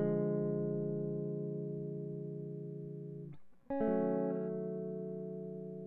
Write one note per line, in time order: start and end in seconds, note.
0.00 3.37 D3
0.00 3.39 F3
0.00 3.30 G#3
3.82 5.88 A3
3.89 5.88 F#3